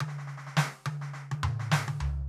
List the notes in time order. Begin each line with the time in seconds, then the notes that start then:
0.00 high tom
0.08 snare
0.18 snare
0.27 snare
0.47 snare
0.57 snare
0.78 snare
0.86 high tom
1.01 snare
1.13 snare
1.31 open hi-hat, high tom
1.43 mid tom
1.59 snare
1.72 snare
1.88 high tom
2.00 floor tom